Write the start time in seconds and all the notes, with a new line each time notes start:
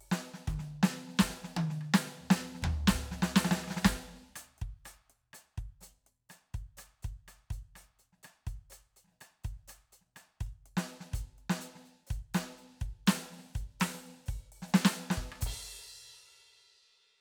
0.01 open hi-hat
0.12 snare
0.24 open hi-hat
0.34 snare
0.48 kick, hi-hat pedal, high tom
0.54 kick
0.58 kick, snare
0.72 high tom
0.83 snare
1.09 snare
1.17 snare, hi-hat pedal
1.21 kick
1.30 snare
1.44 snare
1.57 hi-hat pedal, high tom
1.70 snare
1.81 cross-stick
1.94 snare
2.07 snare
2.20 floor tom
2.31 snare
2.55 snare
2.63 kick, floor tom
2.88 kick, snare
2.95 kick, snare
3.12 snare
3.22 snare
3.36 snare
3.41 cross-stick, snare
3.51 snare
3.57 snare
3.64 cross-stick, snare
3.70 snare
3.77 snare
3.83 snare
3.85 kick, snare, hi-hat pedal
4.36 closed hi-hat, cross-stick
4.58 kick, closed hi-hat
4.85 open hi-hat, cross-stick, snare, hi-hat pedal
5.10 closed hi-hat
5.33 closed hi-hat, cross-stick, snare
5.58 kick, open hi-hat
5.81 closed hi-hat, snare, hi-hat pedal
6.07 closed hi-hat
6.30 closed hi-hat, cross-stick, snare, hi-hat pedal
6.54 open hi-hat, kick
6.77 closed hi-hat, cross-stick, snare, hi-hat pedal
7.03 closed hi-hat, kick
7.28 closed hi-hat, cross-stick, snare
7.51 closed hi-hat, kick
7.75 open hi-hat, cross-stick, snare, hi-hat pedal
7.99 closed hi-hat
8.13 snare
8.23 closed hi-hat, cross-stick, snare
8.47 closed hi-hat, kick
8.55 snare
8.70 closed hi-hat, cross-stick, hi-hat pedal
8.96 closed hi-hat
9.04 snare
9.07 snare
9.21 closed hi-hat, cross-stick
9.44 closed hi-hat, kick
9.53 snare
9.56 snare
9.68 closed hi-hat, cross-stick, hi-hat pedal
9.93 closed hi-hat
10.01 snare
10.16 closed hi-hat, cross-stick, snare
10.41 open hi-hat, kick
10.47 kick
10.66 closed hi-hat
10.77 snare
10.90 closed hi-hat
11.01 snare
11.12 closed hi-hat, kick, snare
11.20 kick
11.38 closed hi-hat
11.50 snare
11.59 closed hi-hat, snare
11.76 snare
11.80 snare
11.86 closed hi-hat, snare
12.07 kick, snare, hi-hat pedal
12.11 closed hi-hat
12.16 kick
12.19 kick
12.34 open hi-hat, snare
12.58 closed hi-hat, snare
12.63 snare
12.65 snare
12.71 snare
12.81 kick, closed hi-hat, hi-hat pedal
13.07 open hi-hat, snare
13.17 snare
13.32 open hi-hat, snare
13.39 snare
13.44 snare
13.47 snare
13.50 snare, hi-hat pedal
13.55 closed hi-hat, kick, snare
13.61 kick
13.80 open hi-hat, snare
13.94 snare
14.05 open hi-hat
14.09 snare
14.13 snare
14.17 snare
14.24 snare, hi-hat pedal
14.29 open hi-hat, kick
14.52 open hi-hat
14.62 snare
14.68 hi-hat pedal
14.74 snare
14.85 snare
14.93 hi-hat pedal
15.10 snare, hi-hat pedal
15.17 kick
15.32 cross-stick
15.41 kick, cross-stick, hi-hat pedal
15.46 kick, crash
15.58 hi-hat pedal
15.66 cross-stick